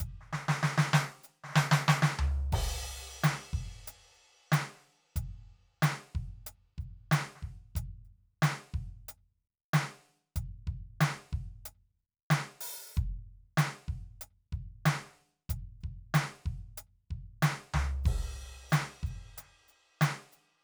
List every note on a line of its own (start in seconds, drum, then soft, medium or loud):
0.01 closed hi-hat loud
0.01 kick soft
0.22 snare soft
0.34 snare medium
0.49 snare loud
0.64 snare loud
0.79 snare loud
0.94 snare loud
1.24 hi-hat pedal loud
1.45 snare soft
1.49 snare soft
1.53 snare soft
1.56 snare loud
1.72 snare loud
1.89 snare loud
1.89 hi-hat pedal medium
2.03 snare loud
2.20 floor tom loud
2.53 kick medium
2.53 crash loud
3.24 closed hi-hat loud
3.24 snare loud
3.54 kick medium
3.54 closed hi-hat soft
3.88 closed hi-hat loud
4.15 closed hi-hat soft
4.53 closed hi-hat loud
4.53 snare loud
4.76 snare soft
5.17 closed hi-hat loud
5.17 kick medium
5.83 closed hi-hat loud
5.83 snare loud
6.16 kick medium
6.47 closed hi-hat loud
6.79 kick soft
6.79 closed hi-hat soft
7.12 closed hi-hat loud
7.12 snare loud
7.36 snare soft
7.43 kick soft
7.43 closed hi-hat soft
7.76 closed hi-hat loud
7.76 kick medium
8.06 closed hi-hat soft
8.43 closed hi-hat loud
8.43 snare loud
8.75 kick medium
8.75 closed hi-hat soft
9.09 closed hi-hat loud
9.74 closed hi-hat loud
9.74 snare loud
10.37 closed hi-hat loud
10.37 kick medium
10.68 kick soft
10.68 closed hi-hat soft
11.01 closed hi-hat loud
11.01 snare loud
11.32 kick medium
11.32 closed hi-hat soft
11.66 closed hi-hat loud
12.00 closed hi-hat soft
12.31 closed hi-hat loud
12.31 snare loud
12.62 open hi-hat loud
12.96 closed hi-hat soft
12.96 kick medium
12.96 hi-hat pedal medium
13.58 closed hi-hat loud
13.58 snare loud
13.89 kick soft
14.22 closed hi-hat loud
14.53 kick soft
14.53 closed hi-hat soft
14.86 closed hi-hat loud
14.86 snare loud
15.07 snare soft
15.50 closed hi-hat loud
15.50 kick medium
15.82 kick soft
15.82 closed hi-hat soft
16.15 closed hi-hat loud
16.15 snare loud
16.47 kick medium
16.47 closed hi-hat soft
16.78 closed hi-hat loud
17.10 kick soft
17.10 closed hi-hat soft
17.43 closed hi-hat loud
17.43 snare loud
17.75 snare medium
17.75 floor tom loud
18.04 kick medium
18.04 hi-hat pedal soft
18.04 crash medium
18.70 closed hi-hat loud
18.70 snare loud
18.70 hi-hat pedal medium
19.04 closed hi-hat soft
19.04 kick medium
19.38 closed hi-hat loud
19.38 snare soft
19.69 hi-hat pedal medium
20.02 closed hi-hat loud
20.02 snare loud
20.33 closed hi-hat soft
20.33 hi-hat pedal medium